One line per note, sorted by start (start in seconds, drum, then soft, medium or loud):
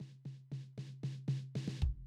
0.00 snare soft
0.00 floor tom soft
0.25 snare soft
0.25 floor tom soft
0.52 snare soft
0.52 floor tom soft
0.78 snare soft
0.78 floor tom medium
1.03 snare soft
1.03 floor tom medium
1.28 snare soft
1.28 floor tom medium
1.55 snare medium
1.55 floor tom medium
1.68 snare medium
1.68 floor tom medium
1.82 kick soft